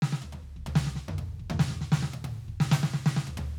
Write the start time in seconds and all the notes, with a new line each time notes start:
0.02 snare
0.12 snare
0.22 floor tom
0.32 floor tom
0.42 kick
0.56 kick
0.66 floor tom
0.75 snare
0.86 snare
0.96 snare
1.08 mid tom
1.18 high tom
1.28 kick
1.39 kick
1.50 mid tom
1.59 snare
1.70 snare
1.81 snare
1.92 snare
2.02 snare
2.13 high tom
2.24 high tom
2.35 kick
2.48 kick
2.60 snare
2.71 snare
2.83 snare
2.93 snare
3.06 snare
3.16 snare
3.27 floor tom
3.37 floor tom